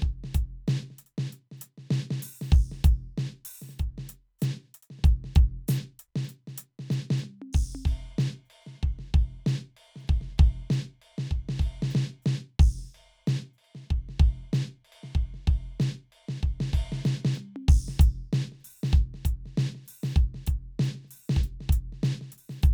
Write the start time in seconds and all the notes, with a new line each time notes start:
0.02 kick
0.24 snare
0.34 closed hi-hat, kick
0.68 snare, hi-hat pedal
0.83 snare
0.90 snare
0.98 closed hi-hat
1.06 open hi-hat
1.18 snare
1.32 closed hi-hat
1.51 snare
1.57 hi-hat pedal
1.61 closed hi-hat
1.78 snare
1.91 snare, hi-hat pedal
2.11 snare
2.22 open hi-hat
2.41 snare
2.52 kick, crash
2.72 snare
2.84 closed hi-hat, kick
3.18 snare, hi-hat pedal
3.28 snare
3.45 open hi-hat
3.54 open hi-hat
3.62 snare
3.69 snare, hi-hat pedal
3.79 closed hi-hat, kick
3.98 snare
4.09 closed hi-hat
4.39 snare, closed hi-hat, hi-hat pedal
4.57 snare
4.74 closed hi-hat
4.83 closed hi-hat
4.90 snare
4.99 snare
5.04 closed hi-hat, kick
5.24 snare
5.35 kick, closed hi-hat
5.68 open hi-hat, snare, hi-hat pedal
5.99 closed hi-hat
6.16 snare
6.24 hi-hat pedal
6.29 closed hi-hat
6.47 snare, hi-hat pedal
6.58 closed hi-hat
6.79 snare
6.90 snare, hi-hat pedal
7.10 snare
7.18 hi-hat pedal
7.24 mid tom
7.42 high tom
7.53 kick, crash
7.75 high tom
7.85 kick, ride
8.18 snare, hi-hat pedal
8.45 hi-hat pedal
8.50 ride bell
8.62 ride
8.66 snare
8.83 kick
8.99 snare
9.14 kick, ride bell
9.46 snare, hi-hat pedal
9.77 ride
9.84 ride
9.96 snare, hi-hat pedal
10.04 snare, ride
10.09 kick
10.21 snare
10.38 kick, ride
10.70 snare, hi-hat pedal
11.02 ride
11.18 snare
11.31 kick
11.49 snare
11.59 kick, ride
11.82 snare
11.90 hi-hat pedal
11.95 snare
12.22 snare, hi-hat pedal
12.59 kick, crash
12.79 snare
12.83 snare
12.88 snare
12.94 ride bell
13.27 snare, hi-hat pedal
13.53 hi-hat pedal
13.58 ride bell
13.64 ride
13.75 snare
13.90 kick
14.09 snare
14.19 kick, ride bell
14.53 snare, hi-hat pedal
14.85 ride bell
14.92 ride
15.03 snare
15.15 kick
15.34 snare
15.47 kick, ride bell
15.80 snare, hi-hat pedal
16.12 ride bell
16.29 snare
16.43 kick, ride
16.60 snare
16.73 kick, ride
16.92 kick, snare
17.05 snare, hi-hat pedal
17.25 snare
17.34 hi-hat pedal, mid tom
17.56 high tom
17.68 kick, crash
17.88 snare
17.99 closed hi-hat, kick
18.33 snare, hi-hat pedal
18.52 snare
18.60 hi-hat pedal
18.64 open hi-hat
18.83 snare
18.93 kick, closed hi-hat
19.14 snare
19.25 closed hi-hat, kick
19.46 snare
19.58 snare, hi-hat pedal
19.75 snare
19.85 open hi-hat, hi-hat pedal
20.03 snare
20.16 kick, closed hi-hat
20.34 snare
20.47 closed hi-hat, kick
20.69 snare
20.79 snare, hi-hat pedal
20.95 snare
21.05 snare, hi-hat pedal
21.11 open hi-hat
21.29 snare
21.36 kick
21.43 closed hi-hat
21.61 snare
21.69 closed hi-hat, kick
21.93 snare
22.03 snare, hi-hat pedal
22.21 snare
22.32 closed hi-hat
22.38 open hi-hat
22.49 snare
22.61 kick, snare, open hi-hat
22.66 hi-hat pedal